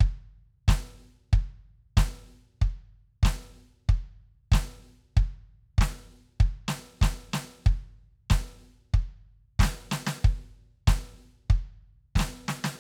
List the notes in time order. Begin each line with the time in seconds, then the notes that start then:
0.01 kick
0.68 kick, snare
1.33 kick
1.97 kick, snare
2.62 kick
3.23 kick, snare
3.89 kick
4.52 kick, snare
5.17 kick
5.79 kick, snare
6.41 kick
6.69 snare
7.02 kick, snare
7.34 snare
7.67 kick
8.30 kick, snare
8.94 kick
9.60 kick, snare
9.64 snare
9.92 snare
10.07 snare
10.25 kick
10.88 kick, snare
11.50 kick
12.16 kick, snare
12.20 snare
12.49 snare
12.65 snare